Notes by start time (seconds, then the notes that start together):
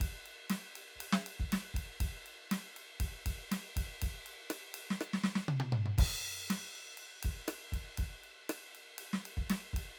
0.01 kick, ride
0.27 ride
0.51 snare, ride
0.76 ride
0.96 kick
1.01 ride
1.13 snare
1.27 ride
1.40 kick
1.53 snare, ride
1.75 kick, ride
2.01 kick, ride
2.06 kick
2.27 ride
2.52 snare, ride
2.77 ride
3.01 kick, ride
3.27 kick, ride
3.52 snare, ride
3.77 kick, ride
4.03 kick, ride
4.27 ride
4.51 cross-stick, ride
4.75 ride
4.91 snare
5.02 cross-stick
5.14 snare
5.24 snare
5.36 snare
5.49 high tom
5.61 high tom
5.73 mid tom
5.87 mid tom
5.99 kick, ride, crash
6.25 ride
6.51 snare, ride
6.76 ride
6.98 ride
7.24 kick, ride
7.49 cross-stick, ride
7.73 kick, ride
7.98 kick, ride
8.24 ride
8.50 cross-stick, ride
8.76 ride
8.99 ride
9.14 snare
9.26 ride
9.38 kick
9.51 snare, ride
9.74 kick, ride